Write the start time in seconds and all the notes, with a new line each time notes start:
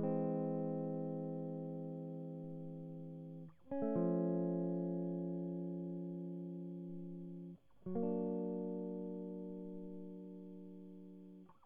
0.00 E3 G#3
0.04 C4
3.73 C#4
3.83 A3
3.97 F3
7.88 F#3
7.96 A#3
8.04 D4